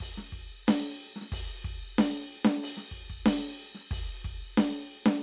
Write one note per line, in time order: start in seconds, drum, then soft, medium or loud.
0.01 kick medium
0.01 crash medium
0.18 snare soft
0.33 kick medium
0.68 snare loud
0.68 crash loud
1.17 snare soft
1.22 snare soft
1.26 snare soft
1.33 kick medium
1.33 crash loud
1.65 kick medium
1.99 snare loud
1.99 crash loud
2.05 cross-stick medium
2.45 snare loud
2.64 crash loud
2.78 snare soft
2.92 kick soft
3.10 kick medium
3.26 snare loud
3.26 crash loud
3.75 snare soft
3.81 cross-stick soft
3.88 kick medium
3.88 snare soft
3.93 crash loud
4.25 kick medium
4.58 snare loud
4.58 crash loud
4.71 snare soft
5.07 snare loud
5.15 snare soft